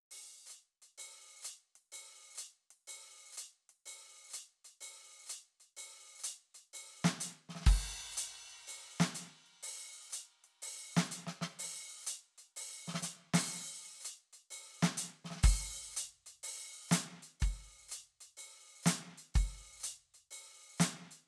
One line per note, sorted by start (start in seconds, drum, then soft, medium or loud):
0.11 open hi-hat medium
0.46 closed hi-hat medium
0.46 hi-hat pedal medium
0.82 closed hi-hat soft
0.98 open hi-hat medium
1.42 closed hi-hat medium
1.42 hi-hat pedal medium
1.75 closed hi-hat soft
1.92 open hi-hat medium
2.35 closed hi-hat medium
2.35 hi-hat pedal medium
2.70 closed hi-hat soft
2.87 open hi-hat medium
3.32 hi-hat pedal medium
3.37 closed hi-hat medium
3.69 closed hi-hat soft
3.86 open hi-hat medium
4.30 closed hi-hat medium
4.30 hi-hat pedal medium
4.65 closed hi-hat soft
4.81 open hi-hat medium
5.26 closed hi-hat medium
5.26 hi-hat pedal medium
5.60 closed hi-hat soft
5.77 open hi-hat medium
6.19 hi-hat pedal medium
6.24 closed hi-hat loud
6.54 closed hi-hat soft
6.73 open hi-hat medium
7.04 snare loud
7.04 hi-hat pedal medium
7.20 closed hi-hat loud
7.49 snare soft
7.55 snare soft
7.60 snare soft
7.66 kick loud
7.66 snare soft
7.66 crash medium
8.11 hi-hat pedal medium
8.17 closed hi-hat loud
8.50 closed hi-hat soft
8.67 open hi-hat medium
9.00 snare loud
9.05 hi-hat pedal medium
9.15 closed hi-hat medium
9.46 closed hi-hat soft
9.63 open hi-hat loud
10.10 closed hi-hat medium
10.10 hi-hat pedal medium
10.44 closed hi-hat soft
10.62 open hi-hat medium
10.97 snare loud
11.03 hi-hat pedal medium
11.11 closed hi-hat medium
11.27 snare medium
11.41 snare medium
11.59 open hi-hat loud
12.02 hi-hat pedal medium
12.07 closed hi-hat loud
12.38 closed hi-hat soft
12.56 open hi-hat medium
12.88 snare medium
12.94 snare medium
12.94 hi-hat pedal medium
13.02 closed hi-hat medium
13.02 snare soft
13.34 open hi-hat loud
13.34 snare loud
14.00 hi-hat pedal medium
14.05 closed hi-hat medium
14.33 closed hi-hat soft
14.50 open hi-hat medium
14.82 snare loud
14.82 hi-hat pedal medium
14.97 closed hi-hat loud
15.24 snare soft
15.30 snare medium
15.35 snare soft
15.42 open hi-hat loud
15.42 kick loud
15.42 snare soft
15.93 closed hi-hat loud
15.93 hi-hat pedal medium
16.26 closed hi-hat soft
16.43 open hi-hat loud
16.89 closed hi-hat loud
16.89 snare loud
16.89 hi-hat pedal medium
17.22 closed hi-hat soft
17.40 open hi-hat medium
17.40 kick medium
17.88 closed hi-hat medium
17.88 hi-hat pedal medium
18.20 closed hi-hat soft
18.37 open hi-hat medium
18.83 closed hi-hat loud
18.83 snare loud
18.83 hi-hat pedal medium
19.18 closed hi-hat soft
19.34 open hi-hat medium
19.34 kick medium
19.80 closed hi-hat loud
19.80 hi-hat pedal medium
20.14 closed hi-hat soft
20.31 open hi-hat medium
20.78 closed hi-hat loud
20.78 snare loud
20.78 hi-hat pedal medium
21.11 closed hi-hat soft